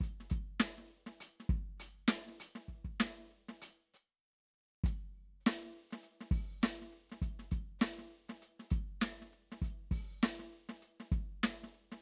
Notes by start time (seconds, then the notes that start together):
0.01 closed hi-hat, kick
0.21 snare
0.30 closed hi-hat, kick
0.60 closed hi-hat, snare
0.78 snare
1.07 snare
1.21 closed hi-hat
1.40 snare
1.50 kick, closed hi-hat
1.78 closed hi-hat, snare
2.08 snare, closed hi-hat
2.29 snare
2.40 closed hi-hat
2.56 snare
2.69 kick, closed hi-hat
2.85 kick
3.00 closed hi-hat, snare
3.33 closed hi-hat
3.49 snare
3.62 closed hi-hat
3.94 hi-hat pedal
4.84 kick, closed hi-hat
5.15 open hi-hat
5.41 hi-hat pedal
5.47 closed hi-hat, snare
5.74 closed hi-hat
5.91 snare, closed hi-hat
6.04 closed hi-hat
6.21 snare
6.32 open hi-hat, kick
6.62 closed hi-hat, snare, hi-hat pedal
6.82 snare
6.86 snare
6.93 closed hi-hat
7.10 snare, closed hi-hat
7.22 closed hi-hat, kick
7.40 snare
7.52 closed hi-hat, kick
7.79 closed hi-hat, snare, hi-hat pedal
7.99 snare
8.11 closed hi-hat
8.29 snare, closed hi-hat
8.42 closed hi-hat
8.60 snare
8.71 closed hi-hat, kick
9.01 closed hi-hat, snare, hi-hat pedal
9.22 snare
9.33 closed hi-hat
9.52 snare, closed hi-hat
9.62 closed hi-hat, kick
9.92 open hi-hat, kick
10.23 closed hi-hat, snare, hi-hat pedal
10.40 snare
10.53 closed hi-hat
10.69 snare, closed hi-hat
10.83 closed hi-hat
11.00 snare
11.12 kick, closed hi-hat
11.44 closed hi-hat, snare
11.64 snare
11.75 closed hi-hat
11.92 snare, closed hi-hat